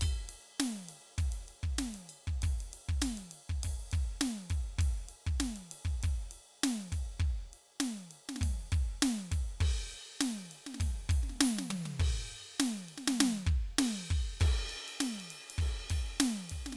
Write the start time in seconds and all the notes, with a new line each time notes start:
0.01 kick, ride bell
0.29 ride
0.60 snare, ride
0.89 ride
1.18 kick, ride
1.32 ride
1.48 ride
1.63 kick
1.78 snare, ride
1.94 ride
2.09 ride bell
2.27 kick
2.42 kick, ride
2.60 ride
2.73 ride
2.89 kick
3.02 snare, ride bell
3.17 ride
3.31 ride
3.49 kick
3.63 kick, ride
3.92 kick, ride
4.21 snare, ride
4.50 kick, ride
4.79 kick, ride
5.09 ride
5.27 kick
5.40 snare, ride
5.56 ride
5.71 ride
5.85 kick
6.03 kick, ride
6.31 ride
6.63 snare, ride
6.92 kick, ride
7.20 kick
7.53 ride
7.80 snare, ride
8.11 ride
8.29 snare
8.36 snare
8.41 kick, ride
8.72 kick, ride
9.02 snare, ride
9.32 kick, ride
9.61 kick, crash
9.91 ride
10.21 snare, ride
10.51 ride
10.67 snare
10.74 snare
10.80 kick, ride
11.09 kick, ride
11.23 snare
11.29 snare
11.36 snare
11.41 snare, hi-hat pedal
11.59 snare
11.70 high tom
11.86 high tom
12.00 kick, crash
12.31 ride
12.60 snare, ride
12.89 ride
12.98 snare
13.08 snare
13.20 snare
13.47 kick
13.79 snare, crash
14.10 kick
14.40 kick, ride
14.70 ride
14.88 ride
15.00 snare, ride
15.20 ride
15.30 ride
15.50 ride
15.58 kick, ride
15.90 kick, ride
16.20 snare, hi-hat pedal, ride
16.50 kick, ride
16.66 snare
16.73 snare